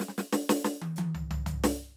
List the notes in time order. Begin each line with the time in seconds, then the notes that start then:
0.01 snare, hi-hat pedal
0.08 snare
0.18 snare
0.33 snare
0.49 snare, hi-hat pedal
0.64 snare
0.82 high tom
0.96 hi-hat pedal, high tom
1.15 floor tom
1.31 floor tom
1.46 floor tom, hi-hat pedal
1.64 open hi-hat, snare
1.69 snare